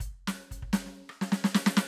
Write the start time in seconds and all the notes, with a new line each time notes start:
0.05 closed hi-hat, kick
0.28 closed hi-hat, snare
0.51 closed hi-hat, kick
0.63 kick
0.73 open hi-hat, snare
0.86 snare
0.94 hi-hat pedal
1.10 cross-stick
1.22 snare
1.32 snare
1.44 snare
1.55 snare
1.67 snare
1.77 snare